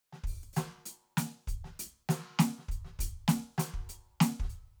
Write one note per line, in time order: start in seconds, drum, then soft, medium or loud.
0.12 snare soft
0.23 open hi-hat medium
0.23 kick medium
0.43 open hi-hat soft
0.53 closed hi-hat medium
0.53 snare loud
0.53 hi-hat pedal medium
0.85 closed hi-hat loud
1.17 closed hi-hat loud
1.17 snare loud
1.47 closed hi-hat medium
1.47 kick medium
1.64 snare soft
1.79 closed hi-hat loud
2.09 closed hi-hat loud
2.09 snare loud
2.39 closed hi-hat loud
2.39 snare loud
2.58 snare soft
2.68 closed hi-hat medium
2.68 kick medium
2.85 snare soft
2.90 snare soft
2.99 closed hi-hat loud
2.99 kick medium
3.28 closed hi-hat loud
3.28 snare loud
3.58 closed hi-hat loud
3.58 snare loud
3.73 kick medium
3.87 closed hi-hat medium
3.87 snare soft
4.20 closed hi-hat loud
4.20 snare loud
4.39 kick medium
4.39 snare soft
4.49 closed hi-hat soft